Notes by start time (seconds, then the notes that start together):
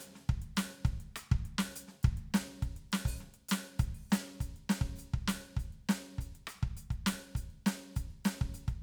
0.01 closed hi-hat
0.16 snare
0.19 snare
0.29 kick, closed hi-hat
0.42 closed hi-hat
0.57 closed hi-hat, snare
0.69 snare
0.85 kick, closed hi-hat
1.01 closed hi-hat
1.16 closed hi-hat, cross-stick
1.32 kick
1.46 closed hi-hat
1.59 snare, closed hi-hat
1.74 closed hi-hat, snare
1.88 snare
2.04 kick, closed hi-hat
2.18 closed hi-hat
2.34 closed hi-hat, snare
2.49 snare
2.63 kick, closed hi-hat
2.77 closed hi-hat
2.93 snare, closed hi-hat
3.06 open hi-hat, kick
3.17 snare, hi-hat pedal
3.34 closed hi-hat
3.49 closed hi-hat, snare
3.80 closed hi-hat, kick, snare
3.95 open hi-hat
4.11 closed hi-hat, snare, hi-hat pedal
4.28 cross-stick
4.41 closed hi-hat, kick
4.57 closed hi-hat
4.70 closed hi-hat, snare
4.82 kick
4.96 closed hi-hat, hi-hat pedal
5.14 kick
5.28 closed hi-hat, snare
5.57 closed hi-hat, kick
5.73 closed hi-hat
5.89 closed hi-hat, snare
6.19 closed hi-hat, kick
6.36 closed hi-hat
6.48 closed hi-hat, cross-stick
6.56 snare
6.63 kick
6.77 closed hi-hat
6.91 kick, closed hi-hat
7.07 closed hi-hat, snare
7.15 snare
7.36 closed hi-hat, kick
7.51 closed hi-hat
7.67 closed hi-hat, snare
7.97 closed hi-hat, kick
8.11 closed hi-hat
8.25 closed hi-hat, snare
8.35 snare
8.42 kick
8.55 closed hi-hat
8.68 kick, closed hi-hat